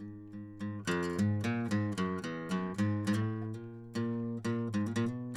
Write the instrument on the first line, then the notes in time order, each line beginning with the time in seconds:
acoustic guitar
0.01 G#2
0.34 G#2
0.61 G#2
0.88 F2
1.20 G#2
1.45 A#2
1.72 G#2
1.98 F#2
2.25 E2
2.52 F#2
2.79 G#2
3.08 A2
3.55 A#2
3.96 A#2
4.45 A#2
4.75 G#2
4.96 B2